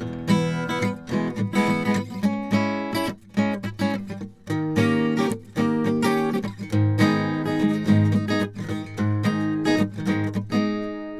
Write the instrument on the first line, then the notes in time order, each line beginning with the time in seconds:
acoustic guitar
0.00 E2 B2
0.29 E3 B3 E4
0.70 B3 E4
0.85 B3
1.10 B2 E3
1.15 G#3 B3
1.38 A2 E3
1.54 G#3 B3 E4
1.69 E3 G#3 B3
1.87 G#3 B3
1.96 D3 B3
2.12 B3
2.24 G#3 C#4
2.53 G#3 C#4 E4
2.96 C#4 E4
3.38 G#3 C#4 E4
3.80 C#4 E4
3.84 G#3
4.49 D#3 A#3
4.78 A#3 C#4 G4 A#4
5.18 C#4 G4 A#4
5.58 D#3 A#3 C4
5.62 G4 A#4
5.86 D#3 A#3 C4 G4
6.04 C#4 G4 A#4
6.35 C#4 G4
6.71 G#2 D#3
7.00 D#3 G#3 B3 D#4 G#4
7.47 B3 D#4 G#4
7.61 D#3 G#3
7.86 G#2 D#3 G#3
7.91 B3
8.14 G#3 B3 D#4
8.29 B3 D#4 G#4
8.41 G#3
8.60 G#3
8.71 D#3 G#3
8.86 G#3
8.99 G#2
9.25 D#3 G#3 B3 D#4 G#4
9.66 B3 D#4 G#4
9.81 G#3
9.97 D#3 G#3
10.07 G#2 D#3 G#3 B3
10.13 D#4
10.36 G#3
10.53 G#3 B3 D#4